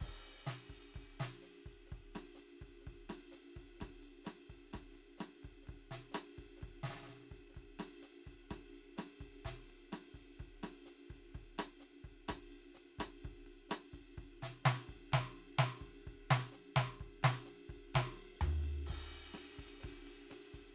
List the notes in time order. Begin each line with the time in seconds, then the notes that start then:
0.01 kick, crash
0.08 kick
0.46 snare, hi-hat pedal, ride
0.70 kick, ride
0.76 snare
0.93 kick, hi-hat pedal, ride
1.20 snare, ride
1.43 hi-hat pedal
1.66 kick, ride
1.72 kick
1.87 hi-hat pedal
1.92 kick
1.98 kick
2.16 cross-stick, ride
2.36 hi-hat pedal
2.40 ride
2.62 kick, ride
2.67 kick
2.81 hi-hat pedal
2.87 kick, ride
2.93 kick
3.10 cross-stick, ride
3.32 hi-hat pedal, ride
3.57 kick, ride
3.62 kick
3.77 hi-hat pedal, ride
3.82 kick, cross-stick
3.88 kick
4.04 ride
4.25 cross-stick, hi-hat pedal, ride
4.50 kick, ride
4.74 kick, cross-stick, ride
4.80 kick
4.93 snare, ride
5.18 cross-stick, hi-hat pedal, ride
5.37 snare
5.44 kick, ride
5.50 kick
5.63 hi-hat pedal
5.68 kick, ride
5.75 kick
5.92 snare, ride
6.12 cross-stick, hi-hat pedal, ride
6.38 kick, ride
6.44 kick
6.57 hi-hat pedal
6.62 kick, ride
6.69 kick
6.84 snare, ride
6.90 snare
6.97 snare
7.03 snare, hi-hat pedal
7.09 snare, ride
7.15 snare
7.21 snare
7.27 snare
7.32 kick, snare, ride
7.37 kick, snare
7.50 hi-hat pedal
7.55 kick, ride
7.62 kick
7.80 cross-stick, ride
8.03 hi-hat pedal, ride
8.27 kick, ride
8.32 kick
8.51 kick, cross-stick, ride
8.57 kick
8.74 ride
8.98 cross-stick, hi-hat pedal, ride
9.21 kick, ride
9.26 kick
9.45 kick, snare, ride
9.52 kick
9.71 ride
9.92 cross-stick, hi-hat pedal, ride
10.15 kick, ride
10.20 kick
10.40 kick, ride
10.46 kick
10.64 cross-stick, ride
10.86 hi-hat pedal, ride
11.11 kick, ride
11.16 kick
11.30 snare
11.35 kick, ride
11.41 kick
11.59 cross-stick, ride
11.81 hi-hat pedal, ride
12.05 kick, ride
12.10 kick
12.29 kick, cross-stick, ride
12.36 kick
12.53 ride
12.75 hi-hat pedal, ride
12.99 kick, cross-stick, ride
13.04 kick
13.25 kick, ride
13.31 kick
13.37 snare
13.47 ride
13.70 cross-stick, hi-hat pedal, ride
13.94 kick, ride
13.99 kick
14.18 kick, ride
14.24 kick
14.43 snare, ride
14.65 snare, hi-hat pedal, ride
14.88 kick, ride
14.94 kick
15.09 hi-hat pedal
15.13 kick, snare, ride
15.19 kick
15.36 ride
15.58 snare, hi-hat pedal, ride
15.82 kick, ride
15.87 kick
16.07 kick, ride
16.13 kick
16.31 snare, ride
16.40 snare
16.53 hi-hat pedal, ride
16.77 kick, snare, ride
16.82 kick
17.00 kick, ride
17.07 kick
17.24 snare, ride
17.46 hi-hat pedal, ride
17.70 kick, ride
17.75 kick
17.95 kick, snare, ride
18.01 kick
18.18 ride
18.42 floor tom, hi-hat pedal, ride
18.65 ride
18.87 kick, crash
18.96 kick
19.34 cross-stick, snare, hi-hat pedal, ride
19.59 kick, ride
19.64 kick
19.80 snare, hi-hat pedal
19.84 kick, ride
19.90 kick
20.08 ride
20.31 snare, hi-hat pedal, ride
20.55 kick, ride
20.60 kick